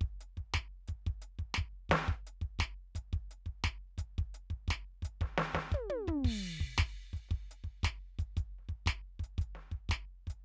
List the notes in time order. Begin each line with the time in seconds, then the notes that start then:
0.01 kick
0.21 closed hi-hat
0.37 kick
0.54 closed hi-hat, kick, snare
0.88 closed hi-hat, kick
1.07 kick
1.22 closed hi-hat
1.39 kick
1.54 closed hi-hat, kick, snare
1.89 closed hi-hat, kick, snare
2.08 kick
2.27 closed hi-hat
2.42 kick
2.59 closed hi-hat, kick, snare
2.95 closed hi-hat, kick
3.13 kick
3.31 closed hi-hat
3.46 kick
3.64 kick, snare, closed hi-hat
3.98 closed hi-hat, kick
4.18 kick
4.34 closed hi-hat
4.50 kick
4.68 closed hi-hat, kick, snare
5.02 closed hi-hat, kick
5.21 kick, snare
5.38 snare
5.54 kick, snare
5.72 kick, high tom
5.89 high tom
6.07 kick, floor tom
6.24 kick, crash
6.60 kick
6.78 closed hi-hat, kick, snare
7.13 kick, closed hi-hat
7.29 kick, snare
7.51 closed hi-hat
7.64 kick
7.83 closed hi-hat, kick, snare
8.19 kick, closed hi-hat
8.37 closed hi-hat, kick
8.59 snare
8.69 kick
8.86 closed hi-hat, kick, snare
9.19 kick
9.24 closed hi-hat
9.38 closed hi-hat, kick
9.55 snare
9.72 kick
9.89 closed hi-hat, kick, snare
10.27 closed hi-hat, kick